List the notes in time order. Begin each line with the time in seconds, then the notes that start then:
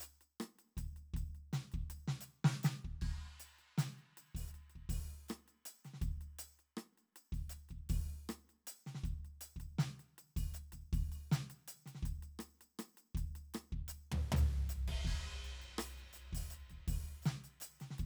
0.01 percussion
0.04 percussion
0.22 percussion
0.41 cross-stick, percussion
0.44 cross-stick
0.60 percussion
0.78 kick, percussion
0.97 percussion
1.15 kick, percussion
1.36 percussion
1.54 snare, percussion
1.73 kick, percussion
1.91 percussion
2.09 snare
2.22 percussion
2.45 snare
2.64 snare, percussion
2.85 kick
3.02 kick, crash
3.41 percussion
3.60 percussion
3.79 snare, percussion
3.99 percussion
4.18 percussion
4.36 kick, percussion
4.49 percussion
4.55 percussion
4.71 percussion
4.76 kick
4.90 kick, percussion
5.30 cross-stick, percussion
5.49 percussion
5.66 percussion
5.86 snare, percussion
5.95 snare
6.03 kick, percussion
6.22 percussion
6.40 percussion
6.60 percussion
6.78 cross-stick, percussion
6.99 percussion
7.17 percussion
7.33 kick, percussion
7.50 percussion
7.70 kick, percussion
7.90 kick, percussion
8.30 cross-stick, percussion
8.50 percussion
8.68 percussion
8.87 snare, percussion
8.96 snare
9.05 kick, percussion
9.26 percussion
9.42 percussion
9.57 kick, percussion
9.80 snare, percussion
10.00 percussion
10.19 percussion
10.37 kick, percussion
10.55 percussion
10.73 kick, percussion
10.94 kick, percussion
11.13 percussion
11.33 snare, percussion
11.51 percussion
11.69 percussion
11.87 snare, percussion
11.96 snare
12.04 kick, percussion
12.23 percussion
12.40 cross-stick, percussion
12.62 percussion
12.80 cross-stick, percussion
12.98 percussion
13.16 kick, percussion
13.36 percussion
13.55 cross-stick, percussion
13.73 kick
13.89 percussion
14.13 floor tom
14.33 floor tom
14.37 percussion
14.70 percussion
14.89 kick, ride
15.06 kick, crash
15.45 percussion
15.63 percussion
15.79 cross-stick, percussion
15.96 snare, percussion
16.14 percussion
16.17 percussion
16.34 kick, percussion
16.51 percussion
16.54 percussion
16.71 kick, percussion
16.89 kick, percussion
17.06 percussion
17.23 snare, percussion
17.27 percussion
17.45 percussion
17.61 percussion
17.81 snare, percussion
17.92 snare
17.99 kick, percussion